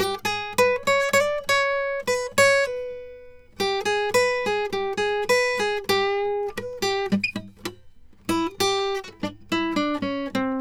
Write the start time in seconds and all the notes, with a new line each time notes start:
0.00 G4
0.26 G#4
0.59 B4
0.88 C#5
1.14 D5
1.50 C#5
2.08 B4
2.39 C#5
2.66 B4
3.61 G4
3.87 G#4
4.15 B4
4.47 G#4
4.74 G4
4.99 G#4
5.30 B4
5.61 G#4
5.90 G4
6.83 G4
8.30 E4
8.61 G4
9.05 F#4
9.53 E4
9.77 D4
10.04 C#4
10.36 C4